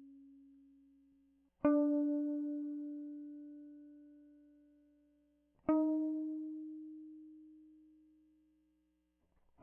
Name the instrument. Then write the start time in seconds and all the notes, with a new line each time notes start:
electric guitar
1.65 D4
5.69 D#4